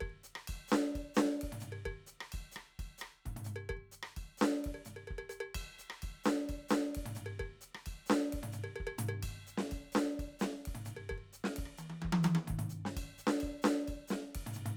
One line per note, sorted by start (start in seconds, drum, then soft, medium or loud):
0.01 kick soft
0.01 percussion loud
0.10 percussion soft
0.24 hi-hat pedal medium
0.36 cross-stick medium
0.48 kick soft
0.48 ride bell medium
0.68 snare loud
0.68 hi-hat pedal medium
0.96 kick soft
0.96 ride bell medium
1.15 snare loud
1.15 hi-hat pedal medium
1.25 snare soft
1.42 kick soft
1.42 ride medium
1.49 kick soft
1.49 mid tom medium
1.61 hi-hat pedal medium
1.61 mid tom medium
1.72 percussion medium
1.86 kick soft
1.86 percussion loud
2.07 hi-hat pedal medium
2.21 cross-stick medium
2.32 kick soft
2.32 ride bell medium
2.52 hi-hat pedal medium
2.56 cross-stick medium
2.79 kick soft
2.79 ride bell medium
2.98 cross-stick medium
2.98 hi-hat pedal medium
3.26 kick soft
3.26 mid tom medium
3.37 mid tom medium
3.45 hi-hat pedal medium
3.56 percussion medium
3.70 kick soft
3.70 percussion loud
3.77 percussion soft
3.92 hi-hat pedal medium
4.03 cross-stick medium
4.17 kick soft
4.17 ride bell medium
4.38 snare loud
4.38 hi-hat pedal medium
4.65 kick soft
4.65 ride medium
4.72 kick soft
4.72 percussion medium
4.85 hi-hat pedal medium
4.85 mid tom soft
4.97 percussion medium
5.08 kick soft
5.08 percussion medium
5.19 percussion loud
5.30 hi-hat pedal medium
5.30 percussion medium
5.41 percussion loud
5.55 kick soft
5.55 ride bell loud
5.79 hi-hat pedal medium
5.90 cross-stick medium
6.02 kick soft
6.02 ride bell medium
6.24 snare medium
6.24 hi-hat pedal medium
6.49 kick soft
6.49 ride bell medium
6.69 snare medium
6.69 hi-hat pedal medium
6.95 kick soft
6.95 ride medium
7.06 mid tom medium
7.15 hi-hat pedal medium
7.15 mid tom medium
7.26 percussion medium
7.40 kick soft
7.40 percussion loud
7.61 hi-hat pedal medium
7.75 cross-stick medium
7.86 kick soft
7.86 ride bell medium
8.06 snare loud
8.06 hi-hat pedal medium
8.33 kick soft
8.33 ride medium
8.43 mid tom medium
8.53 hi-hat pedal medium
8.53 mid tom medium
8.64 percussion loud
8.76 percussion loud
8.80 kick soft
8.87 percussion loud
8.99 hi-hat pedal medium
8.99 mid tom loud
9.09 percussion loud
9.23 kick soft
9.23 ride bell loud
9.47 hi-hat pedal medium
9.58 snare loud
9.72 kick soft
9.72 ride bell medium
9.78 kick soft
9.92 snare medium
9.92 hi-hat pedal medium
10.19 kick soft
10.19 ride bell medium
10.25 kick soft
10.40 snare loud
10.40 hi-hat pedal medium
10.66 kick soft
10.66 ride medium
10.73 kick soft
10.73 mid tom medium
10.86 hi-hat pedal medium
10.86 mid tom medium
10.97 percussion medium
11.10 kick soft
11.10 percussion loud
11.18 percussion soft
11.33 hi-hat pedal medium
11.44 snare medium
11.57 kick soft
11.57 ride medium
11.65 kick soft
11.65 cross-stick soft
11.78 hi-hat pedal medium
11.78 high tom soft
11.90 high tom medium
12.02 kick soft
12.02 high tom medium
12.13 high tom loud
12.24 hi-hat pedal medium
12.24 high tom loud
12.35 high tom loud
12.48 kick soft
12.48 mid tom medium
12.56 kick soft
12.56 mid tom medium
12.70 hi-hat pedal medium
12.86 snare medium
12.97 kick soft
12.97 ride bell medium
13.06 kick soft
13.18 hi-hat pedal medium
13.27 snare medium
13.41 kick soft
13.41 ride bell medium
13.62 snare loud
13.62 hi-hat pedal medium
13.88 kick soft
13.88 ride bell medium
14.08 snare loud
14.08 hi-hat pedal medium
14.35 kick soft
14.35 ride medium
14.42 kick soft
14.47 mid tom medium
14.54 hi-hat pedal medium
14.54 mid tom medium
14.66 mid tom medium